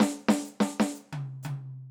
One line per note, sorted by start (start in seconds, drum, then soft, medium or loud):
0.00 snare loud
0.19 hi-hat pedal soft
0.28 snare loud
0.45 hi-hat pedal medium
0.60 snare loud
0.80 snare loud
0.95 hi-hat pedal medium
1.13 high tom loud
1.43 hi-hat pedal medium
1.43 high tom loud